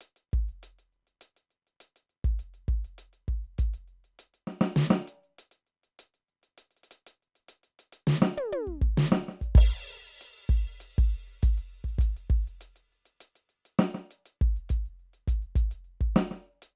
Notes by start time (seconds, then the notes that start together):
0.01 closed hi-hat
0.16 closed hi-hat
0.32 kick, closed hi-hat
0.49 closed hi-hat
0.63 closed hi-hat
0.79 closed hi-hat
0.93 closed hi-hat
1.07 closed hi-hat
1.21 closed hi-hat
1.37 closed hi-hat
1.51 closed hi-hat
1.67 closed hi-hat
1.80 closed hi-hat
1.96 closed hi-hat
2.10 closed hi-hat
2.25 closed hi-hat, kick
2.39 closed hi-hat
2.54 closed hi-hat
2.68 kick, closed hi-hat
2.85 closed hi-hat
2.98 closed hi-hat
3.13 closed hi-hat
3.28 kick, closed hi-hat
3.44 closed hi-hat
3.58 closed hi-hat, kick
3.74 closed hi-hat
3.88 closed hi-hat
4.04 closed hi-hat
4.19 closed hi-hat
4.34 closed hi-hat
4.48 snare
4.61 snare
4.76 snare
4.91 snare
5.08 closed hi-hat
5.24 closed hi-hat
5.39 closed hi-hat
5.52 closed hi-hat
5.67 closed hi-hat
5.84 closed hi-hat
5.99 closed hi-hat
6.14 closed hi-hat
6.29 closed hi-hat
6.43 closed hi-hat
6.58 closed hi-hat
6.71 closed hi-hat
6.77 closed hi-hat
6.84 closed hi-hat
6.91 closed hi-hat
7.07 closed hi-hat
7.23 closed hi-hat
7.36 closed hi-hat
7.49 closed hi-hat
7.64 closed hi-hat
7.79 closed hi-hat
7.93 closed hi-hat
8.07 snare
8.22 snare
8.38 high tom
8.53 high tom
8.67 kick
8.82 kick
8.98 snare
9.12 snare
9.29 snare
9.42 kick, closed hi-hat
9.55 kick, crash
9.72 closed hi-hat
9.83 closed hi-hat
10.06 closed hi-hat
10.21 closed hi-hat
10.38 closed hi-hat
10.49 kick, closed hi-hat
10.69 closed hi-hat
10.80 closed hi-hat
10.97 closed hi-hat, kick
11.13 closed hi-hat
11.28 closed hi-hat
11.43 closed hi-hat, kick
11.58 closed hi-hat
11.73 closed hi-hat
11.84 kick
11.89 closed hi-hat
11.99 closed hi-hat, kick
12.17 closed hi-hat
12.30 kick, closed hi-hat
12.48 closed hi-hat
12.61 closed hi-hat
12.76 closed hi-hat
12.93 closed hi-hat
13.06 closed hi-hat
13.21 closed hi-hat
13.36 closed hi-hat
13.49 closed hi-hat
13.66 closed hi-hat
13.79 snare
13.95 snare
14.11 closed hi-hat
14.26 closed hi-hat
14.42 kick, closed hi-hat
14.57 closed hi-hat
14.70 closed hi-hat, kick
14.86 closed hi-hat
15.00 closed hi-hat
15.14 closed hi-hat
15.28 kick, closed hi-hat
15.42 closed hi-hat
15.56 closed hi-hat, kick
15.71 closed hi-hat
15.85 closed hi-hat
16.01 kick, closed hi-hat
16.16 closed hi-hat, snare
16.31 snare
16.45 closed hi-hat
16.62 closed hi-hat